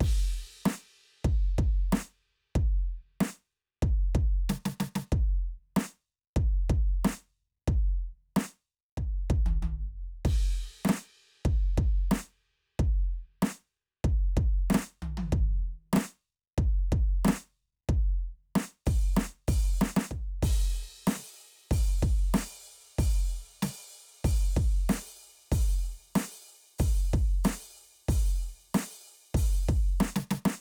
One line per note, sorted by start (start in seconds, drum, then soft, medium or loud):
0.01 kick loud
0.01 crash medium
0.66 snare loud
1.25 kick loud
1.59 kick loud
1.93 snare loud
2.56 kick loud
3.21 snare loud
3.83 kick loud
4.15 kick loud
4.50 snare loud
4.66 snare loud
4.81 snare loud
4.96 snare loud
5.13 kick loud
5.77 snare loud
6.37 kick loud
6.70 kick loud
7.05 snare loud
7.68 kick loud
8.37 snare loud
8.98 kick medium
9.30 kick loud
9.47 floor tom loud
9.63 floor tom loud
10.26 kick loud
10.26 crash medium
10.85 snare loud
10.89 snare loud
11.46 kick loud
11.78 kick loud
12.12 snare loud
12.80 kick loud
13.43 snare loud
14.05 kick loud
14.37 kick loud
14.71 snare loud
14.75 snare loud
15.03 floor tom loud
15.18 high tom loud
15.33 kick loud
15.93 snare loud
15.97 snare loud
16.58 kick loud
16.93 kick loud
17.25 snare loud
17.29 snare loud
17.89 kick loud
18.56 snare loud
18.86 open hi-hat loud
18.86 kick loud
19.13 snare loud
19.13 hi-hat pedal soft
19.33 snare soft
19.48 open hi-hat loud
19.48 kick loud
19.79 snare loud
19.79 hi-hat pedal soft
19.97 snare loud
20.11 kick medium
20.43 open hi-hat loud
20.43 kick loud
20.43 crash loud
21.08 open hi-hat loud
21.08 snare loud
21.16 snare soft
21.72 open hi-hat loud
21.72 kick loud
22.03 kick loud
22.34 open hi-hat loud
22.34 snare loud
22.99 open hi-hat loud
22.99 kick loud
23.63 open hi-hat loud
23.63 snare loud
24.25 open hi-hat loud
24.25 kick loud
24.57 kick loud
24.90 open hi-hat loud
24.90 snare loud
25.52 open hi-hat loud
25.52 kick loud
25.75 kick soft
26.16 open hi-hat loud
26.16 snare loud
26.79 open hi-hat loud
26.79 kick loud
27.14 kick loud
27.45 open hi-hat loud
27.45 snare loud
28.09 open hi-hat loud
28.09 kick loud
28.75 open hi-hat loud
28.75 snare loud
29.35 open hi-hat loud
29.35 kick loud
29.69 kick loud
29.99 snare loud
29.99 hi-hat pedal soft
30.16 snare loud
30.31 snare loud
30.46 snare loud